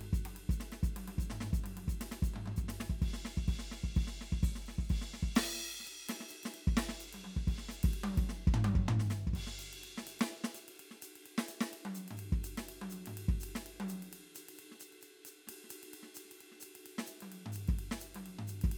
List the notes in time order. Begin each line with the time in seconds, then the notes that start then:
0.01 floor tom, ride
0.13 kick, hi-hat pedal
0.25 high tom, ride
0.36 high tom, ride
0.49 kick, hi-hat pedal
0.60 snare, ride
0.72 snare, ride
0.83 kick, hi-hat pedal
0.96 high tom, ride
1.08 high tom, ride
1.18 kick, hi-hat pedal
1.30 snare, floor tom
1.41 snare, floor tom
1.53 kick, hi-hat pedal
1.64 high tom, ride
1.77 high tom, ride
1.88 kick, hi-hat pedal
2.01 snare, ride
2.12 snare, ride
2.23 kick, hi-hat pedal
2.34 floor tom, high tom
2.46 floor tom, high tom
2.56 kick, hi-hat pedal
2.69 snare, ride
2.80 snare, ride
2.90 kick
3.02 kick, ride
3.14 snare
3.25 snare
3.38 kick
3.48 kick, ride
3.59 snare
3.72 snare
3.84 kick
3.96 kick, ride
4.07 snare
4.21 snare
4.33 kick
4.43 open hi-hat, kick
4.56 snare
4.68 snare
4.79 kick
4.90 kick, ride
5.02 snare
5.14 snare
5.23 kick
5.36 snare, crash
5.80 snare
5.85 hi-hat pedal, ride
6.09 snare, ride
6.21 snare
6.29 hi-hat pedal, ride
6.44 snare, ride
6.54 ride
6.67 kick
6.77 snare, ride
6.89 snare
7.00 hi-hat pedal, ride
7.13 high tom, ride
7.25 high tom
7.37 kick
7.48 kick, ride
7.58 snare
7.69 snare, hi-hat pedal
7.83 kick, ride
7.94 ride
8.04 high tom
8.15 kick, hi-hat pedal, ride
8.29 snare
8.47 kick
8.54 floor tom
8.65 high tom
8.75 kick
8.88 floor tom
9.00 snare
9.10 snare, hi-hat pedal
9.27 kick
9.34 kick, ride
9.47 snare
9.59 hi-hat pedal, ride
9.73 ride
9.84 ride
9.98 snare
10.07 hi-hat pedal, ride
10.20 snare, ride
10.30 ride
10.44 snare
10.55 hi-hat pedal, ride
10.68 ride
10.75 hi-hat pedal
10.80 ride
10.91 snare
11.02 hi-hat pedal, ride
11.16 ride
11.24 hi-hat pedal
11.38 snare
11.48 hi-hat pedal, ride
11.61 snare, ride
11.73 ride
11.85 high tom
11.95 hi-hat pedal, ride
12.08 floor tom, ride
12.17 hi-hat pedal, ride
12.33 kick
12.44 hi-hat pedal, ride
12.58 snare, ride
12.69 ride
12.82 high tom
12.90 hi-hat pedal, ride
13.06 floor tom, ride
13.17 ride
13.29 kick
13.40 hi-hat pedal, ride
13.55 snare, ride
13.66 ride
13.80 high tom
13.89 hi-hat pedal, ride
14.03 ride
14.11 hi-hat pedal, ride
14.35 hi-hat pedal, ride
14.49 ride
14.55 hi-hat pedal
14.59 ride
14.72 snare
14.80 hi-hat pedal, ride
14.93 ride
15.01 hi-hat pedal, ride
15.25 hi-hat pedal, ride
15.47 snare, ride
15.64 snare
15.70 hi-hat pedal, ride
15.83 snare, ride
15.94 ride
16.03 snare
16.09 snare
16.15 hi-hat pedal, ride
16.25 snare
16.32 ride
16.41 ride
16.52 snare
16.60 snare, hi-hat pedal, ride
16.75 ride
16.81 hi-hat pedal
16.86 ride
16.99 snare
17.06 hi-hat pedal, ride
17.21 high tom, ride
17.32 ride
17.46 floor tom
17.52 hi-hat pedal, ride
17.68 kick, ride
17.79 ride
17.91 snare
18.00 hi-hat pedal, ride
18.15 high tom, ride
18.26 ride
18.39 floor tom
18.48 hi-hat pedal, ride
18.62 kick, ride